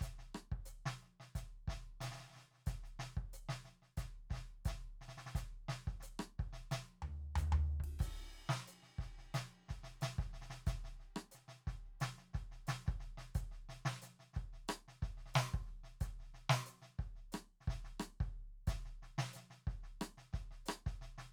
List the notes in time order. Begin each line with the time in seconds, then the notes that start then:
0.01 kick, snare, hi-hat pedal
0.18 snare
0.35 cross-stick
0.52 kick
0.65 snare, hi-hat pedal
0.86 snare
1.02 snare
1.20 snare
1.35 kick, snare, hi-hat pedal
1.68 kick, snare
2.01 snare, hi-hat pedal
2.04 snare
2.11 snare
2.15 snare
2.18 snare
2.20 snare
2.23 snare
2.27 snare
2.30 snare
2.33 snare
2.36 snare
2.38 snare
2.42 snare
2.51 snare
2.54 snare
2.58 snare
2.66 kick, snare, hi-hat pedal
2.83 snare, hi-hat pedal
2.99 snare
3.17 kick
3.33 hi-hat pedal
3.49 snare
3.65 snare
3.82 snare
3.97 kick, snare, hi-hat pedal
4.30 kick, snare
4.33 snare
4.65 kick, snare, hi-hat pedal
5.01 snare
5.08 snare
5.17 snare
5.26 snare
5.35 kick, snare, hi-hat pedal
5.68 snare
5.87 kick, snare
6.00 snare, hi-hat pedal
6.19 cross-stick
6.38 kick, snare
6.53 snare
6.71 snare, hi-hat pedal
7.02 floor tom
7.36 floor tom, hi-hat pedal
7.52 floor tom
7.80 kick, ride
7.99 kick, hi-hat pedal, crash
8.49 snare
8.67 snare, hi-hat pedal
8.83 snare
8.98 kick, snare
9.18 snare
9.34 snare, hi-hat pedal
9.68 kick, snare
9.83 snare
10.01 snare, hi-hat pedal
10.18 kick, snare
10.33 snare
10.41 snare
10.50 snare
10.67 kick, snare, hi-hat pedal
10.84 snare
10.99 snare
11.16 cross-stick
11.31 snare, hi-hat pedal
11.48 snare
11.67 kick, snare
11.84 snare
12.00 snare, hi-hat pedal
12.18 snare
12.33 kick, snare
12.51 snare
12.67 snare, hi-hat pedal
12.86 kick, snare
13.00 snare
13.18 snare
13.35 kick, snare, hi-hat pedal
13.51 snare
13.69 snare
13.85 snare
14.02 snare, hi-hat pedal
14.19 snare
14.33 kick, snare
14.53 snare
14.68 cross-stick, hi-hat pedal
14.88 snare
15.02 kick, snare
15.17 snare
15.26 snare
15.34 snare, hi-hat pedal
15.54 kick
15.66 snare
15.84 snare
16.01 kick, snare, hi-hat pedal
16.19 snare
16.22 snare
16.34 snare
16.49 snare
16.66 snare, hi-hat pedal
16.82 snare
16.99 kick, snare
17.16 snare
17.32 cross-stick, hi-hat pedal
17.61 snare
17.68 kick, snare
17.84 snare
18.00 cross-stick, hi-hat pedal
18.20 kick, snare
18.67 kick, snare, hi-hat pedal
18.85 snare
19.02 snare
19.18 snare
19.33 snare, hi-hat pedal
19.50 snare
19.67 kick, snare
19.83 snare
20.01 cross-stick, hi-hat pedal
20.18 snare
20.33 kick, snare
20.51 snare
20.66 cross-stick, hi-hat pedal
20.86 kick, snare
21.01 snare
21.18 snare